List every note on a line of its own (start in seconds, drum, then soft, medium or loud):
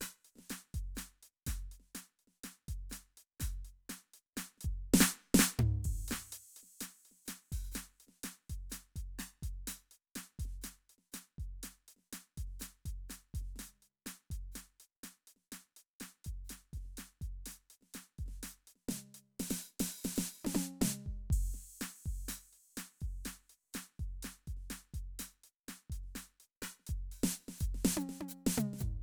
0.01 open hi-hat medium
0.01 snare soft
0.25 closed hi-hat soft
0.36 snare soft
0.37 snare soft
0.50 closed hi-hat medium
0.50 snare soft
0.74 closed hi-hat soft
0.74 kick soft
0.95 closed hi-hat medium
0.95 snare soft
0.95 hi-hat pedal soft
1.23 closed hi-hat soft
1.47 open hi-hat medium
1.47 kick soft
1.47 snare soft
1.72 closed hi-hat soft
1.80 snare soft
1.95 closed hi-hat medium
1.95 snare soft
2.19 closed hi-hat soft
2.28 snare soft
2.44 closed hi-hat medium
2.44 snare soft
2.69 closed hi-hat soft
2.69 kick soft
2.90 closed hi-hat medium
2.90 snare soft
2.90 hi-hat pedal medium
3.17 closed hi-hat soft
3.40 open hi-hat medium
3.40 kick soft
3.40 snare soft
3.65 closed hi-hat soft
3.90 closed hi-hat medium
3.90 snare soft
4.14 closed hi-hat soft
4.36 closed hi-hat medium
4.36 snare soft
4.58 closed hi-hat medium
4.58 snare soft
4.65 kick soft
4.70 kick soft
4.94 snare loud
5.01 snare loud
5.34 snare loud
5.39 snare loud
5.59 floor tom loud
5.83 kick soft
5.83 hi-hat pedal soft
5.83 crash medium
6.08 snare medium
6.08 closed hi-hat medium
6.12 snare soft
6.32 closed hi-hat medium
6.56 closed hi-hat soft
6.63 snare soft
6.81 closed hi-hat loud
6.81 snare soft
7.05 closed hi-hat soft
7.11 snare soft
7.26 closed hi-hat medium
7.26 snare soft
7.26 hi-hat pedal soft
7.52 open hi-hat soft
7.52 kick soft
7.72 closed hi-hat medium
7.72 snare soft
7.72 hi-hat pedal medium
8.00 closed hi-hat soft
8.07 snare soft
8.23 closed hi-hat medium
8.23 snare soft
8.50 closed hi-hat soft
8.50 kick soft
8.70 closed hi-hat medium
8.70 snare soft
8.70 hi-hat pedal soft
8.96 closed hi-hat soft
8.96 kick soft
9.18 closed hi-hat medium
9.18 snare soft
9.18 hi-hat pedal soft
9.43 closed hi-hat soft
9.43 kick soft
9.68 open hi-hat medium
9.68 snare soft
9.91 closed hi-hat soft
10.16 closed hi-hat medium
10.16 snare soft
10.39 closed hi-hat soft
10.39 kick soft
10.45 snare soft
10.62 closed hi-hat medium
10.62 snare soft
10.62 hi-hat pedal soft
10.90 closed hi-hat soft
10.98 snare soft
11.12 closed hi-hat medium
11.12 snare soft
11.12 hi-hat pedal soft
11.39 kick soft
11.39 closed hi-hat soft
11.63 open hi-hat medium
11.63 snare soft
11.88 closed hi-hat soft
11.96 snare soft
11.99 snare soft
12.13 closed hi-hat medium
12.13 snare soft
12.38 closed hi-hat soft
12.38 kick soft
12.47 snare soft
12.60 closed hi-hat medium
12.60 snare soft
12.60 hi-hat pedal medium
12.86 closed hi-hat soft
12.86 kick soft
13.09 closed hi-hat medium
13.09 snare soft
13.09 hi-hat pedal soft
13.34 closed hi-hat soft
13.34 kick soft
13.41 snare soft
13.56 snare soft
13.56 mid tom soft
13.59 open hi-hat medium
13.59 snare soft
13.59 hi-hat pedal soft
13.82 closed hi-hat soft
14.06 closed hi-hat medium
14.06 snare soft
14.31 closed hi-hat soft
14.31 kick soft
14.52 closed hi-hat medium
14.52 snare soft
14.52 hi-hat pedal soft
14.80 closed hi-hat soft
15.04 closed hi-hat medium
15.04 snare soft
15.27 closed hi-hat soft
15.36 snare soft
15.52 closed hi-hat medium
15.52 snare soft
15.77 closed hi-hat soft
16.00 closed hi-hat medium
16.00 snare soft
16.25 closed hi-hat soft
16.25 kick soft
16.45 hi-hat pedal soft
16.50 closed hi-hat medium
16.50 snare soft
16.73 kick soft
16.73 snare soft
16.73 closed hi-hat soft
16.85 snare soft
16.97 closed hi-hat medium
16.97 snare soft
17.21 kick soft
17.21 closed hi-hat soft
17.46 open hi-hat medium
17.46 snare soft
17.70 closed hi-hat soft
17.81 snare soft
17.83 snare soft
17.94 closed hi-hat medium
17.94 snare soft
18.19 closed hi-hat soft
18.19 kick soft
18.26 snare soft
18.28 snare soft
18.43 open hi-hat medium
18.43 snare soft
18.67 closed hi-hat soft
18.76 snare soft
18.89 closed hi-hat medium
18.89 snare medium
18.89 hi-hat pedal soft
18.89 mid tom medium
19.15 closed hi-hat medium
19.40 open hi-hat medium
19.40 snare medium
19.51 open hi-hat medium
19.51 snare medium
19.80 open hi-hat medium
19.80 snare medium
20.05 open hi-hat medium
20.05 snare medium
20.16 open hi-hat medium
20.16 snare medium
20.45 snare medium
20.45 high tom medium
20.55 snare medium
20.55 high tom medium
20.82 snare medium
20.82 mid tom loud
21.06 kick soft
21.30 kick medium
21.30 crash medium
21.43 kick soft
21.54 snare soft
21.81 closed hi-hat medium
21.81 snare soft
22.05 kick soft
22.05 closed hi-hat soft
22.29 open hi-hat medium
22.29 snare soft
22.29 hi-hat pedal soft
22.53 closed hi-hat soft
22.77 closed hi-hat medium
22.77 snare soft
23.01 kick soft
23.01 closed hi-hat soft
23.24 closed hi-hat medium
23.24 snare soft
23.24 hi-hat pedal soft
23.50 closed hi-hat soft
23.73 closed hi-hat medium
23.73 snare soft
23.73 hi-hat pedal soft
24.00 kick soft
24.00 closed hi-hat soft
24.23 closed hi-hat medium
24.23 snare soft
24.47 kick soft
24.47 closed hi-hat soft
24.57 snare soft
24.70 closed hi-hat medium
24.70 snare soft
24.94 closed hi-hat soft
24.94 kick soft
25.19 open hi-hat medium
25.19 snare soft
25.44 closed hi-hat soft
25.68 closed hi-hat medium
25.68 snare soft
25.90 closed hi-hat soft
25.90 kick soft
26.04 snare soft
26.15 open hi-hat medium
26.15 snare soft
26.40 closed hi-hat soft
26.62 closed hi-hat medium
26.62 snare soft
26.80 snare soft
26.87 closed hi-hat medium
26.87 kick soft
27.12 open hi-hat soft
27.24 snare medium
27.36 open hi-hat soft
27.48 snare soft
27.57 kick soft
27.57 closed hi-hat medium
27.57 hi-hat pedal medium
27.75 snare soft
27.85 snare loud
27.97 hi-hat pedal medium
27.97 high tom loud
28.09 snare soft
28.21 high tom medium
28.29 hi-hat pedal medium
28.47 snare medium
28.58 hi-hat pedal medium
28.58 mid tom loud
28.73 snare soft
28.78 kick soft
28.78 hi-hat pedal medium
28.78 floor tom medium